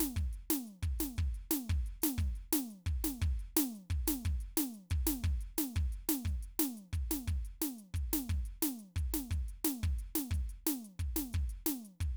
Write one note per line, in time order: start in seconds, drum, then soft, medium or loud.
0.01 snare medium
0.01 closed hi-hat soft
0.17 kick soft
0.17 closed hi-hat soft
0.33 closed hi-hat soft
0.51 snare medium
0.51 closed hi-hat medium
0.68 closed hi-hat soft
0.83 kick soft
0.83 closed hi-hat soft
1.00 snare medium
1.00 closed hi-hat soft
1.17 kick medium
1.17 closed hi-hat soft
1.35 closed hi-hat soft
1.52 snare medium
1.52 closed hi-hat soft
1.70 kick medium
1.70 closed hi-hat soft
1.87 closed hi-hat soft
2.03 snare medium
2.03 closed hi-hat medium
2.19 kick medium
2.19 closed hi-hat soft
2.36 closed hi-hat soft
2.53 snare medium
2.53 closed hi-hat soft
2.71 closed hi-hat soft
2.87 kick soft
2.87 closed hi-hat soft
3.05 snare medium
3.05 closed hi-hat soft
3.22 kick medium
3.22 closed hi-hat soft
3.40 closed hi-hat soft
3.57 snare medium
3.57 closed hi-hat soft
3.76 closed hi-hat soft
3.91 kick soft
3.91 closed hi-hat soft
4.08 snare medium
4.08 closed hi-hat soft
4.26 kick medium
4.26 closed hi-hat soft
4.41 closed hi-hat soft
4.58 snare medium
4.58 closed hi-hat medium
4.75 closed hi-hat soft
4.91 kick medium
4.91 closed hi-hat medium
5.08 snare medium
5.08 closed hi-hat soft
5.24 kick medium
5.24 closed hi-hat soft
5.41 closed hi-hat soft
5.58 snare medium
5.58 closed hi-hat soft
5.76 kick medium
5.76 closed hi-hat soft
5.93 closed hi-hat soft
6.10 snare medium
6.10 closed hi-hat medium
6.26 kick soft
6.26 closed hi-hat soft
6.43 closed hi-hat soft
6.60 snare medium
6.60 closed hi-hat soft
6.78 closed hi-hat soft
6.94 kick soft
6.94 closed hi-hat soft
7.11 snare medium
7.11 closed hi-hat soft
7.28 kick soft
7.28 closed hi-hat medium
7.45 closed hi-hat soft
7.62 snare medium
7.62 closed hi-hat medium
7.79 closed hi-hat soft
7.95 kick soft
7.95 closed hi-hat medium
8.14 snare medium
8.14 closed hi-hat soft
8.30 kick soft
8.30 closed hi-hat soft
8.46 closed hi-hat soft
8.63 snare medium
8.63 closed hi-hat medium
8.80 closed hi-hat soft
8.97 kick soft
8.97 closed hi-hat soft
9.15 snare medium
9.15 closed hi-hat soft
9.31 kick soft
9.31 closed hi-hat soft
9.49 closed hi-hat soft
9.65 snare medium
9.65 closed hi-hat medium
9.84 kick medium
9.84 closed hi-hat soft
9.99 closed hi-hat soft
10.16 snare medium
10.16 closed hi-hat medium
10.32 kick soft
10.32 closed hi-hat soft
10.50 closed hi-hat soft
10.67 snare medium
10.67 closed hi-hat medium
10.85 closed hi-hat soft
11.00 kick soft
11.00 closed hi-hat medium
11.17 snare medium
11.17 closed hi-hat medium
11.34 kick medium
11.34 closed hi-hat soft
11.50 closed hi-hat soft
11.67 snare medium
11.67 closed hi-hat medium
11.85 closed hi-hat soft
12.01 kick soft
12.01 closed hi-hat medium